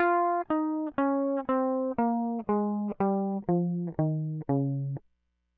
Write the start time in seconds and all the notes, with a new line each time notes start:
0.00 F4
0.50 D#4
0.98 C#4
1.49 C4
1.99 A#3
2.49 G#3
3.01 G3
3.49 F3
4.00 D#3
4.50 C#3